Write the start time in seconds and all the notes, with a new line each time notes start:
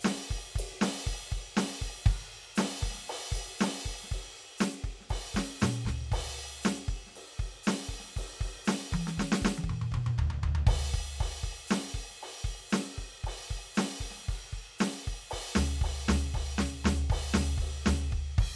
0.01 snare, hi-hat pedal
0.05 crash
0.30 kick, crash
0.55 kick, crash
0.81 snare, crash
1.06 kick, crash
1.32 kick, crash
1.57 snare, crash
1.81 kick, crash
2.06 kick, crash
2.55 snare, hi-hat pedal, crash
2.81 kick, snare
2.86 snare
2.90 snare
2.94 snare
2.97 snare
3.03 snare
3.07 snare, crash
3.32 kick, crash
3.58 snare, hi-hat pedal
3.63 crash
3.85 kick, crash
4.03 snare
4.11 kick, crash
4.37 crash
4.58 snare, hi-hat pedal, crash
4.84 kick, crash
5.01 snare
5.05 snare
5.08 kick, snare, crash
5.10 snare
5.18 snare
5.34 kick, snare, crash
5.60 snare, hi-hat pedal, mid tom
5.85 kick, snare, floor tom
6.12 kick, crash
6.37 crash
6.62 snare, hi-hat pedal, crash
6.88 kick, crash
7.06 snare
7.10 snare
7.13 snare
7.15 snare, crash
7.39 kick, crash
7.63 hi-hat pedal
7.67 snare, crash
7.89 kick, crash
7.99 snare
8.03 snare
8.06 snare
8.09 snare
8.16 kick, snare, crash
8.41 kick, crash
8.65 snare, hi-hat pedal, crash
8.92 kick, high tom
9.07 snare
9.17 kick, snare
9.32 snare
9.42 kick, snare
9.58 high tom
9.64 kick
9.69 mid tom
9.81 mid tom
9.92 kick, mid tom
10.06 mid tom
10.18 kick, floor tom
10.30 floor tom
10.43 kick, floor tom
10.55 floor tom
10.67 kick, crash
10.94 kick
11.20 kick, crash
11.42 kick, crash
11.67 snare, hi-hat pedal
11.72 crash
11.94 kick, crash
12.11 snare
12.22 crash
12.44 kick, crash
12.69 snare, hi-hat pedal
12.74 crash
12.98 kick, crash
13.24 kick, crash
13.50 kick, crash
13.74 snare, hi-hat pedal
13.79 crash
14.00 kick, crash
14.11 snare
14.15 snare
14.18 snare
14.20 snare
14.24 snare
14.25 kick, snare
14.29 crash
14.53 kick
14.78 snare, hi-hat pedal, crash
15.07 kick
15.26 snare
15.30 kick, crash
15.55 snare, floor tom
15.81 kick, crash
16.08 snare, floor tom
16.34 kick, crash
16.58 snare, floor tom
16.84 snare, floor tom
17.10 kick, crash
17.34 snare, floor tom
17.58 kick, crash
17.86 snare, floor tom
18.12 kick
18.38 kick, crash